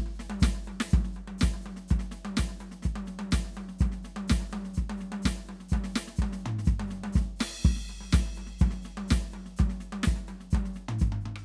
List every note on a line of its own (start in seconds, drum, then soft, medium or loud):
0.07 high tom medium
0.15 hi-hat pedal soft
0.20 snare medium
0.30 high tom loud
0.41 kick loud
0.41 snare loud
0.41 hi-hat pedal medium
0.56 high tom medium
0.65 hi-hat pedal soft
0.65 high tom medium
0.81 snare loud
0.90 hi-hat pedal medium
0.94 kick loud
0.94 high tom loud
1.05 snare soft
1.14 hi-hat pedal soft
1.14 high tom medium
1.28 high tom medium
1.39 snare loud
1.39 hi-hat pedal medium
1.44 kick loud
1.54 high tom medium
1.62 hi-hat pedal soft
1.67 high tom medium
1.77 snare soft
1.89 kick loud
1.89 hi-hat pedal medium
1.89 high tom loud
2.00 snare medium
2.12 snare medium
2.12 hi-hat pedal medium
2.25 high tom loud
2.37 kick medium
2.37 snare loud
2.37 hi-hat pedal medium
2.50 high tom medium
2.60 hi-hat pedal medium
2.60 high tom medium
2.72 snare soft
2.83 kick medium
2.83 snare soft
2.83 hi-hat pedal medium
2.96 high tom loud
3.06 snare soft
3.06 hi-hat pedal soft
3.20 high tom loud
3.32 kick medium
3.32 snare loud
3.32 hi-hat pedal medium
3.45 high tom medium
3.54 hi-hat pedal soft
3.54 high tom loud
3.69 snare soft
3.79 kick loud
3.79 hi-hat pedal medium
3.79 high tom loud
3.93 snare soft
4.03 snare soft
4.03 hi-hat pedal soft
4.17 high tom loud
4.28 kick loud
4.28 snare loud
4.28 hi-hat pedal medium
4.41 high tom medium
4.51 hi-hat pedal medium
4.51 high tom loud
4.65 snare soft
4.74 snare soft
4.74 hi-hat pedal medium
4.78 kick medium
4.90 high tom loud
4.98 snare soft
4.98 hi-hat pedal soft
5.13 high tom loud
5.23 kick medium
5.23 snare loud
5.23 hi-hat pedal medium
5.37 high tom medium
5.46 hi-hat pedal soft
5.46 high tom medium
5.61 snare soft
5.69 kick medium
5.69 hi-hat pedal medium
5.74 high tom loud
5.84 snare medium
5.92 snare loud
5.92 hi-hat pedal soft
6.08 snare medium
6.17 kick medium
6.17 hi-hat pedal medium
6.23 high tom loud
6.33 snare medium
6.40 hi-hat pedal soft
6.46 floor tom loud
6.59 snare soft
6.65 kick loud
6.65 snare soft
6.65 hi-hat pedal medium
6.80 high tom loud
6.88 snare soft
6.88 hi-hat pedal soft
7.04 high tom loud
7.13 kick loud
7.13 snare medium
7.13 hi-hat pedal medium
7.37 hi-hat pedal soft
7.37 crash loud
7.41 snare loud
7.63 kick loud
7.63 hi-hat pedal medium
7.68 high tom medium
7.77 snare soft
7.85 hi-hat pedal soft
7.90 high tom medium
8.01 high tom medium
8.12 kick loud
8.12 snare loud
8.12 hi-hat pedal medium
8.27 high tom soft
8.35 hi-hat pedal medium
8.35 high tom medium
8.47 snare soft
8.59 kick loud
8.59 hi-hat pedal medium
8.59 high tom loud
8.71 snare soft
8.83 snare soft
8.83 hi-hat pedal medium
8.98 high tom loud
9.09 kick loud
9.09 snare loud
9.09 hi-hat pedal medium
9.23 high tom soft
9.32 hi-hat pedal soft
9.32 high tom medium
9.46 snare soft
9.57 kick loud
9.57 hi-hat pedal medium
9.57 high tom loud
9.70 snare soft
9.81 snare soft
9.81 hi-hat pedal medium
9.93 high tom loud
10.04 snare loud
10.04 hi-hat pedal medium
10.08 kick loud
10.17 high tom medium
10.28 hi-hat pedal soft
10.28 high tom medium
10.41 snare soft
10.51 kick loud
10.51 hi-hat pedal medium
10.55 high tom loud
10.66 snare soft
10.74 snare soft
10.74 hi-hat pedal soft
10.89 floor tom loud
10.99 kick loud
10.99 snare soft
10.99 hi-hat pedal medium
11.13 floor tom loud
11.21 hi-hat pedal soft
11.26 floor tom loud
11.37 cross-stick medium